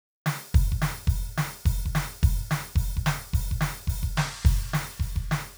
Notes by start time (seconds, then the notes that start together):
0.26 open hi-hat, snare
0.54 open hi-hat, kick
0.72 kick
0.82 open hi-hat, snare
1.07 open hi-hat, kick
1.38 open hi-hat, snare
1.65 open hi-hat, kick
1.86 kick
1.95 open hi-hat, snare
2.23 open hi-hat, kick
2.51 open hi-hat, snare
2.76 open hi-hat, kick
2.97 kick
3.06 open hi-hat, snare
3.33 open hi-hat, kick
3.51 kick
3.61 open hi-hat, snare
3.87 open hi-hat, kick
4.03 kick
4.17 snare, crash
4.45 open hi-hat, kick
4.73 open hi-hat, snare
4.99 open hi-hat, kick
5.16 kick
5.31 open hi-hat, snare